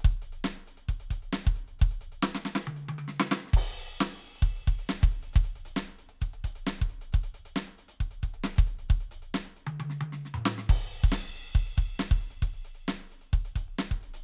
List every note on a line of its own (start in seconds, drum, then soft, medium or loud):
0.01 closed hi-hat medium
0.05 kick loud
0.11 closed hi-hat soft
0.22 closed hi-hat medium
0.33 closed hi-hat medium
0.45 snare loud
0.56 closed hi-hat soft
0.68 closed hi-hat medium
0.78 closed hi-hat medium
0.89 closed hi-hat medium
0.89 kick medium
1.00 closed hi-hat medium
1.11 closed hi-hat medium
1.11 kick medium
1.23 closed hi-hat soft
1.33 snare loud
1.45 closed hi-hat medium
1.45 kick loud
1.56 closed hi-hat medium
1.68 closed hi-hat medium
1.80 closed hi-hat medium
1.80 kick loud
1.92 closed hi-hat medium
2.12 closed hi-hat medium
2.23 snare loud
2.35 snare loud
2.46 snare loud
2.56 snare loud
2.68 high tom loud
2.77 closed hi-hat medium
2.89 high tom loud
2.99 cross-stick medium
3.09 snare medium
3.20 snare loud
3.32 snare loud
3.48 snare soft
3.54 kick loud
3.54 crash loud
3.69 closed hi-hat soft
3.80 closed hi-hat medium
3.92 closed hi-hat medium
4.01 snare loud
4.13 closed hi-hat medium
4.25 closed hi-hat medium
4.36 closed hi-hat medium
4.43 kick loud
4.56 closed hi-hat medium
4.68 closed hi-hat medium
4.68 kick loud
4.79 closed hi-hat medium
4.90 snare loud
5.02 closed hi-hat medium
5.02 kick loud
5.12 closed hi-hat medium
5.23 closed hi-hat medium
5.34 closed hi-hat medium
5.34 kick loud
5.45 closed hi-hat medium
5.56 closed hi-hat medium
5.66 closed hi-hat loud
5.77 snare loud
5.88 closed hi-hat medium
5.99 closed hi-hat medium
6.10 closed hi-hat medium
6.22 closed hi-hat medium
6.22 kick medium
6.34 closed hi-hat medium
6.45 closed hi-hat loud
6.45 kick medium
6.56 closed hi-hat medium
6.67 snare loud
6.79 closed hi-hat medium
6.79 kick loud
6.90 closed hi-hat medium
7.02 closed hi-hat medium
7.13 closed hi-hat medium
7.13 kick loud
7.24 closed hi-hat medium
7.35 closed hi-hat medium
7.46 closed hi-hat medium
7.57 snare loud
7.68 closed hi-hat medium
7.79 closed hi-hat medium
7.89 closed hi-hat medium
8.01 kick medium
8.01 closed hi-hat medium
8.11 closed hi-hat medium
8.23 closed hi-hat medium
8.23 kick medium
8.35 closed hi-hat medium
8.44 snare loud
8.56 closed hi-hat medium
8.56 kick loud
8.67 closed hi-hat medium
8.79 closed hi-hat medium
8.90 closed hi-hat medium
8.90 kick loud
9.01 closed hi-hat medium
9.12 closed hi-hat loud
9.23 closed hi-hat medium
9.35 snare loud
9.45 closed hi-hat medium
9.57 closed hi-hat medium
9.67 high tom loud
9.80 high tom loud
9.90 snare medium
10.01 high tom loud
10.13 snare medium
10.26 snare soft
10.35 mid tom loud
10.46 snare loud
10.59 snare medium
10.70 kick loud
10.70 crash medium
10.79 closed hi-hat medium
11.04 kick loud
11.12 snare loud
11.12 crash loud
11.36 closed hi-hat medium
11.48 closed hi-hat medium
11.56 closed hi-hat medium
11.56 kick loud
11.66 closed hi-hat medium
11.78 closed hi-hat medium
11.78 kick loud
11.89 closed hi-hat soft
12.00 snare loud
12.12 closed hi-hat medium
12.12 kick loud
12.21 closed hi-hat medium
12.31 closed hi-hat medium
12.43 closed hi-hat medium
12.43 kick loud
12.54 closed hi-hat soft
12.65 closed hi-hat medium
12.89 snare loud
13.00 closed hi-hat medium
13.12 closed hi-hat medium
13.22 closed hi-hat medium
13.34 kick loud
13.34 closed hi-hat medium
13.46 closed hi-hat medium
13.56 closed hi-hat medium
13.56 kick medium
13.69 closed hi-hat soft
13.79 snare loud
13.92 closed hi-hat medium
13.92 kick medium
14.03 closed hi-hat medium
14.14 closed hi-hat loud